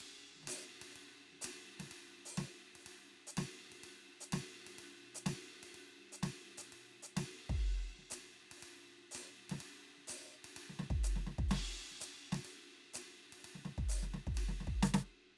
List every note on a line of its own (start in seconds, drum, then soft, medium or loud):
0.01 ride medium
0.37 snare soft
0.41 snare soft
0.43 snare soft
0.48 hi-hat pedal loud
0.48 ride loud
0.82 ride medium
0.92 hi-hat pedal soft
0.96 ride medium
1.33 snare soft
1.42 hi-hat pedal loud
1.42 ride loud
1.80 snare soft
1.80 ride medium
1.85 hi-hat pedal soft
1.92 ride medium
2.26 hi-hat pedal medium
2.38 snare soft
2.38 ride loud
2.76 ride medium
2.80 hi-hat pedal soft
2.87 ride medium
3.27 hi-hat pedal loud
3.38 snare medium
3.38 ride loud
3.70 snare soft
3.70 ride medium
3.75 hi-hat pedal soft
3.84 ride medium
4.21 hi-hat pedal loud
4.33 snare medium
4.33 ride loud
4.67 hi-hat pedal soft
4.67 ride medium
4.79 ride medium
5.15 hi-hat pedal loud
5.26 snare medium
5.26 ride loud
5.63 hi-hat pedal soft
5.63 ride medium
5.75 ride medium
6.13 hi-hat pedal medium
6.23 snare medium
6.23 ride loud
6.58 hi-hat pedal loud
6.58 ride medium
6.73 ride medium
7.03 hi-hat pedal medium
7.17 snare medium
7.17 ride loud
7.50 kick medium
7.50 ride medium
7.99 snare soft
8.11 hi-hat pedal loud
8.11 ride medium
8.52 ride medium
8.57 hi-hat pedal soft
8.63 ride medium
9.12 hi-hat pedal medium
9.12 ride loud
9.34 hi-hat pedal soft
9.50 snare soft
9.50 ride medium
9.58 hi-hat pedal soft
9.58 ride medium
9.98 snare soft
10.08 hi-hat pedal loud
10.08 ride medium
10.45 ride medium
10.50 hi-hat pedal soft
10.57 ride medium
10.70 snare soft
10.79 snare soft
10.91 kick soft
11.04 hi-hat pedal loud
11.04 ride medium
11.16 snare soft
11.27 snare soft
11.39 kick soft
11.49 snare medium
11.49 hi-hat pedal soft
11.49 ride loud
11.91 snare soft
12.01 hi-hat pedal loud
12.01 ride medium
12.33 snare medium
12.33 ride medium
12.45 hi-hat pedal soft
12.45 ride medium
12.94 hi-hat pedal loud
12.94 ride loud
13.33 ride medium
13.40 hi-hat pedal soft
13.45 ride medium
13.55 snare soft
13.65 snare soft
13.78 kick soft
13.89 hi-hat pedal loud
13.89 ride medium
14.03 snare soft
14.09 hi-hat pedal soft
14.14 snare soft
14.27 kick soft
14.35 hi-hat pedal soft
14.35 ride loud
14.49 snare soft
14.61 snare soft
14.68 kick soft
14.83 snare loud
14.83 hi-hat pedal loud
14.94 snare loud